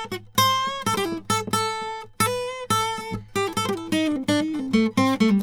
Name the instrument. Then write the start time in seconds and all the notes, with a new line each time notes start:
acoustic guitar
0.13 F#4
0.40 C5
0.88 A4
0.99 G4
1.07 E4
1.31 A4
1.55 A4
2.22 A4
2.32 B4
2.72 A4
3.37 G4
3.48 F4
3.58 A4
3.68 F#4 C5
3.79 E4 A4
3.94 D#4
4.08 D4
4.18 C4
4.30 D4
4.42 D#4
4.55 C#4
4.65 C4
4.75 A3
4.99 C4
5.22 A3